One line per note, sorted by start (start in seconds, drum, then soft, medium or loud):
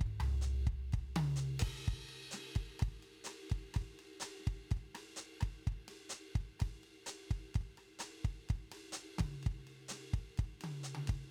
0.01 kick soft
0.06 kick soft
0.20 floor tom loud
0.20 ride medium
0.42 hi-hat pedal medium
0.46 ride soft
0.67 kick soft
0.67 ride soft
0.72 kick soft
0.93 kick soft
0.93 ride soft
0.99 kick soft
1.16 high tom loud
1.16 ride medium
1.36 hi-hat pedal medium
1.40 ride soft
1.60 kick soft
1.60 crash loud
1.60 ride medium
1.68 kick soft
1.86 kick soft
1.86 ride soft
1.93 kick soft
2.09 ride soft
2.31 snare soft
2.31 hi-hat pedal medium
2.31 ride medium
2.56 kick soft
2.56 ride soft
2.80 kick soft
2.80 cross-stick soft
2.80 ride medium
2.88 kick soft
3.03 ride soft
3.24 cross-stick soft
3.24 snare soft
3.24 hi-hat pedal medium
3.24 ride medium
3.50 kick soft
3.50 ride soft
3.74 kick soft
3.74 cross-stick soft
3.74 snare soft
3.74 ride medium
3.81 kick soft
3.99 ride soft
4.20 cross-stick soft
4.20 snare soft
4.20 hi-hat pedal medium
4.20 ride medium
4.40 snare soft
4.47 kick soft
4.47 ride soft
4.71 kick soft
4.71 ride soft
4.77 kick soft
4.95 cross-stick soft
4.95 snare soft
4.95 ride medium
5.16 hi-hat pedal medium
5.41 kick soft
5.41 cross-stick soft
5.41 ride soft
5.65 kick soft
5.65 ride soft
5.72 kick soft
5.88 snare soft
5.88 ride medium
6.10 hi-hat pedal medium
6.10 ride soft
6.35 kick soft
6.35 ride soft
6.40 kick soft
6.60 kick soft
6.60 cross-stick soft
6.60 ride medium
6.67 kick soft
6.84 ride soft
7.06 cross-stick soft
7.06 hi-hat pedal medium
7.06 ride medium
7.31 kick soft
7.31 ride soft
7.55 kick soft
7.55 ride soft
7.61 kick soft
7.78 cross-stick soft
7.78 ride soft
7.99 cross-stick soft
7.99 hi-hat pedal medium
7.99 ride medium
8.25 kick soft
8.25 ride soft
8.49 kick soft
8.49 ride soft
8.55 kick soft
8.72 cross-stick soft
8.72 ride medium
8.92 hi-hat pedal loud
8.97 ride soft
9.19 kick soft
9.19 high tom medium
9.19 ride medium
9.26 kick soft
9.43 kick soft
9.43 ride soft
9.51 kick soft
9.58 snare soft
9.67 ride soft
9.88 snare soft
9.88 hi-hat pedal medium
9.88 ride medium
10.14 kick soft
10.14 ride soft
10.19 kick soft
10.38 kick soft
10.38 ride soft
10.44 kick soft
10.61 high tom medium
10.61 ride medium
10.84 hi-hat pedal medium
10.84 ride soft
10.95 high tom medium
11.08 kick soft
11.08 ride medium
11.14 kick soft